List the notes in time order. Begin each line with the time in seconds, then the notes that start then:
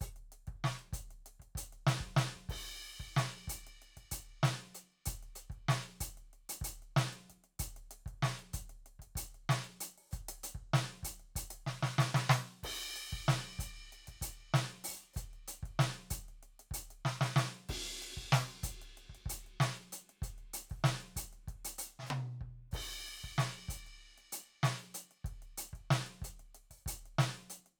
0.01 open hi-hat, kick, hi-hat pedal
0.16 closed hi-hat
0.32 closed hi-hat
0.47 kick, closed hi-hat
0.64 snare
0.79 closed hi-hat
0.93 closed hi-hat, kick
1.11 closed hi-hat
1.26 closed hi-hat
1.40 kick, closed hi-hat
1.56 closed hi-hat, kick
1.73 closed hi-hat
1.87 snare
2.01 kick, closed hi-hat
2.17 snare
2.36 kick
2.49 kick, hi-hat pedal, crash
2.62 closed hi-hat
2.86 closed hi-hat
3.00 kick, closed hi-hat
3.17 snare
3.34 closed hi-hat
3.48 closed hi-hat, kick
3.55 kick
3.67 closed hi-hat
3.82 closed hi-hat
3.97 kick, closed hi-hat
4.12 closed hi-hat, kick
4.34 closed hi-hat
4.43 snare
4.59 closed hi-hat
4.75 closed hi-hat
4.92 closed hi-hat
5.06 closed hi-hat, kick
5.23 closed hi-hat
5.36 closed hi-hat
5.50 kick, closed hi-hat
5.69 snare
5.83 closed hi-hat
6.01 closed hi-hat, kick
6.18 closed hi-hat
6.33 closed hi-hat
6.49 closed hi-hat
6.62 closed hi-hat, kick
6.83 closed hi-hat
6.97 snare
7.13 closed hi-hat
7.30 kick, closed hi-hat
7.44 closed hi-hat
7.60 closed hi-hat, kick
7.77 closed hi-hat
7.91 closed hi-hat
8.06 kick, closed hi-hat
8.23 snare
8.39 closed hi-hat
8.54 closed hi-hat, kick
8.70 closed hi-hat
8.86 closed hi-hat
9.00 kick, closed hi-hat
9.16 closed hi-hat, kick
9.35 closed hi-hat
9.50 snare
9.65 closed hi-hat
9.78 closed hi-hat, kick
9.98 open hi-hat
10.11 closed hi-hat, kick, hi-hat pedal
10.29 closed hi-hat
10.44 closed hi-hat
10.55 kick
10.74 snare
10.90 closed hi-hat
11.03 closed hi-hat, kick
11.20 closed hi-hat
11.36 closed hi-hat, kick
11.51 closed hi-hat
11.67 snare
11.83 snare
11.99 snare
12.15 snare
12.30 snare
12.64 kick, crash
12.77 closed hi-hat
12.96 closed hi-hat
13.13 kick, closed hi-hat
13.29 snare
13.45 closed hi-hat
13.59 closed hi-hat, kick
13.77 closed hi-hat
13.93 closed hi-hat
14.08 kick, closed hi-hat
14.22 closed hi-hat, kick
14.41 closed hi-hat
14.54 snare
14.70 closed hi-hat
14.84 open hi-hat
14.89 kick
15.02 open hi-hat
15.14 closed hi-hat, kick, hi-hat pedal
15.34 closed hi-hat
15.48 closed hi-hat
15.63 kick, closed hi-hat
15.79 snare
15.94 closed hi-hat
16.11 closed hi-hat, kick
16.29 closed hi-hat
16.43 closed hi-hat
16.60 closed hi-hat
16.71 closed hi-hat, kick
16.91 closed hi-hat
17.05 snare
17.21 snare
17.36 snare
17.55 closed hi-hat
17.69 kick, ride
17.86 open hi-hat
18.02 closed hi-hat
18.17 kick, closed hi-hat
18.33 snare
18.49 closed hi-hat
18.64 closed hi-hat, kick
18.82 closed hi-hat
18.98 closed hi-hat
19.10 kick
19.15 open hi-hat
19.26 closed hi-hat, kick
19.47 closed hi-hat
19.61 snare
19.76 closed hi-hat
19.93 closed hi-hat
20.10 closed hi-hat
20.22 closed hi-hat, kick
20.38 open hi-hat
20.54 closed hi-hat
20.70 kick, open hi-hat
20.84 snare
21.01 closed hi-hat
21.17 closed hi-hat, kick
21.33 closed hi-hat
21.48 kick, closed hi-hat
21.65 closed hi-hat
21.79 open hi-hat
21.99 snare
22.03 snare
22.06 snare, hi-hat pedal
22.09 snare, high tom
22.41 kick
22.72 kick, hi-hat pedal, crash
23.08 closed hi-hat
23.24 kick, closed hi-hat
23.38 snare
23.55 closed hi-hat
23.69 closed hi-hat, kick
23.87 closed hi-hat
24.18 closed hi-hat
24.33 closed hi-hat
24.49 closed hi-hat
24.64 snare
24.79 open hi-hat
24.95 closed hi-hat
25.11 closed hi-hat
25.25 kick, closed hi-hat
25.42 closed hi-hat
25.58 closed hi-hat
25.73 kick, closed hi-hat
25.91 snare
26.07 closed hi-hat
26.22 closed hi-hat, kick
26.40 closed hi-hat
26.55 closed hi-hat
26.71 kick, open hi-hat
26.86 closed hi-hat, kick
27.06 closed hi-hat
27.19 snare
27.35 open hi-hat
27.50 closed hi-hat
27.66 closed hi-hat